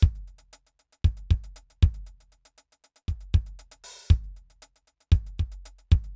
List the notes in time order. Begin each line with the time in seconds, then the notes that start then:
0.01 kick, closed hi-hat, hi-hat pedal
0.16 closed hi-hat
0.28 closed hi-hat
0.39 closed hi-hat
0.54 closed hi-hat
0.67 closed hi-hat
0.80 closed hi-hat
0.93 closed hi-hat
1.05 kick, closed hi-hat
1.18 closed hi-hat
1.31 kick, closed hi-hat
1.44 closed hi-hat
1.57 closed hi-hat
1.71 closed hi-hat
1.83 kick, closed hi-hat
1.95 closed hi-hat
2.07 closed hi-hat
2.21 closed hi-hat
2.33 closed hi-hat
2.46 closed hi-hat
2.59 closed hi-hat
2.73 closed hi-hat
2.85 closed hi-hat
2.97 closed hi-hat
3.09 kick, closed hi-hat
3.21 closed hi-hat
3.34 kick, closed hi-hat
3.47 closed hi-hat
3.60 closed hi-hat
3.72 closed hi-hat
3.85 open hi-hat
4.03 open hi-hat
4.10 kick, closed hi-hat, hi-hat pedal
4.24 closed hi-hat
4.37 closed hi-hat
4.51 closed hi-hat
4.63 closed hi-hat
4.76 closed hi-hat
4.88 closed hi-hat
5.01 closed hi-hat
5.13 kick, closed hi-hat
5.27 closed hi-hat
5.39 kick, closed hi-hat
5.52 closed hi-hat
5.66 closed hi-hat
5.79 closed hi-hat
5.92 kick, closed hi-hat
6.05 closed hi-hat